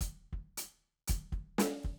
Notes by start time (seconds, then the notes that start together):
0.06 closed hi-hat, kick
0.33 kick
0.57 closed hi-hat
1.08 closed hi-hat, kick
1.32 kick, closed hi-hat
1.58 closed hi-hat, snare
1.64 snare
1.83 kick, closed hi-hat